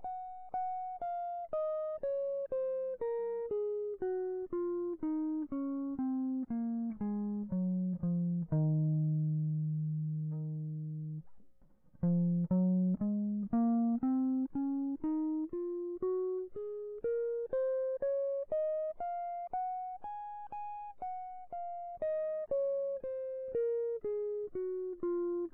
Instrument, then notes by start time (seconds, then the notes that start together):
electric guitar
0.05 F#5
0.54 F#5
1.02 F5
1.53 D#5
2.04 C#5
2.52 C5
3.02 A#4
3.51 G#4
4.02 F#4
4.53 F4
5.03 D#4
5.53 C#4
6.00 C4
6.51 A#3
7.02 G#3
7.53 F#3
8.04 F3
8.54 D#3
12.04 F3
12.52 F#3
13.02 G#3
13.54 A#3
14.04 C4
14.56 C#4
15.04 D#4
15.53 F4
16.03 F#4
16.55 G#4
17.05 A#4
17.53 C5
18.03 C#5
18.52 D#5
19.01 F5
19.54 F#5
20.05 G#5
20.53 G#5
21.02 F#5
21.53 F5
22.02 D#5
22.52 C#5
23.04 C5
23.55 A#4
24.05 G#4
24.56 F#4
25.04 F4